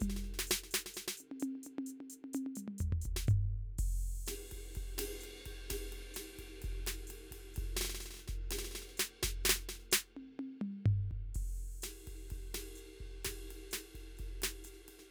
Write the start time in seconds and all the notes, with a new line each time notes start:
0.01 kick, hi-hat pedal, mid tom
0.08 kick, snare
0.17 snare
0.25 snare
0.34 snare
0.39 snare
0.48 snare, hi-hat pedal
0.64 snare
0.72 snare, hi-hat pedal
0.87 snare
0.95 snare, hi-hat pedal
1.08 snare
1.18 hi-hat pedal, high tom
1.32 high tom
1.40 hi-hat pedal, high tom
1.56 high tom
1.64 hi-hat pedal, high tom
1.79 high tom
1.87 hi-hat pedal
2.01 high tom
2.10 hi-hat pedal
2.25 high tom
2.34 hi-hat pedal, high tom
2.47 high tom
2.56 hi-hat pedal, mid tom
2.68 mid tom
2.79 floor tom, hi-hat pedal
2.83 kick
2.88 kick
2.93 floor tom
3.02 kick, hi-hat pedal
3.12 kick
3.17 snare
3.28 kick, hi-hat pedal, floor tom
3.79 kick, hi-hat pedal, crash
3.87 kick
4.27 snare, hi-hat pedal, ride
4.52 kick, ride
4.58 kick, snare
4.75 kick, hi-hat pedal, ride
4.83 kick
4.99 snare, ride
5.21 snare, hi-hat pedal, ride
5.31 snare
5.46 kick, ride
5.52 kick
5.68 kick, snare, hi-hat pedal, ride
5.77 kick
5.93 ride
6.15 snare, hi-hat pedal, ride
6.39 kick, ride
6.62 kick, hi-hat pedal, ride
6.71 kick
6.87 snare, ride
7.08 hi-hat pedal, ride
7.32 kick, ride
7.55 kick, hi-hat pedal, ride
7.65 kick
7.77 snare
7.82 snare
7.85 snare
7.90 snare
7.95 snare
8.01 snare, hi-hat pedal
8.06 snare
8.11 snare
8.15 snare
8.17 snare
8.20 snare
8.28 kick, snare
8.51 snare, ride
8.59 snare
8.65 snare
8.72 snare
8.76 snare
8.82 snare
8.89 snare
8.97 snare, hi-hat pedal
9.00 snare
9.23 kick, snare
9.44 snare, hi-hat pedal
9.50 snare
9.56 snare
9.69 snare
9.75 snare
9.80 snare
9.92 snare, hi-hat pedal
10.17 high tom
10.40 high tom
10.62 mid tom
10.86 kick, floor tom
11.12 kick
11.17 kick
11.35 kick, crash
11.42 kick
11.57 snare
11.83 snare, hi-hat pedal, ride
12.08 kick, snare, ride
12.31 kick, ride
12.38 kick
12.55 snare, ride
12.76 hi-hat pedal
13.01 kick
13.06 kick
13.24 kick, snare, hi-hat pedal, ride
13.32 kick
13.51 ride
13.72 snare, hi-hat pedal, ride
13.95 kick, ride
14.18 kick, hi-hat pedal, ride
14.43 snare, ride
14.65 hi-hat pedal, ride
14.74 snare
14.89 ride
15.00 snare